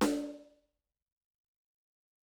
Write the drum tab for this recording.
HH |x-------|
SD |o-------|